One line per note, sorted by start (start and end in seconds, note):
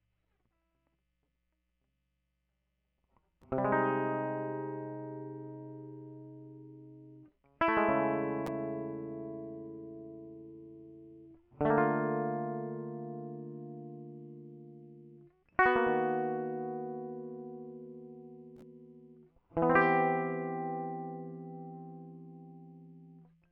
3.43 3.52 B2
3.54 7.28 C3
3.59 7.32 G3
3.65 7.22 G#3
3.73 7.31 D#4
7.62 11.78 E4
7.69 11.30 A3
7.78 11.28 G#3
7.90 11.40 C#3
7.90 7.96 G4
7.96 11.41 E2
11.62 15.31 D3
11.62 15.26 A3
11.71 15.23 A#3
11.78 15.31 F4
15.60 19.31 F#4
15.67 19.21 B3
15.77 19.28 A#3
15.88 19.43 D#3
19.58 23.27 E3
19.63 23.30 B3
19.70 23.23 C4
19.76 23.24 G4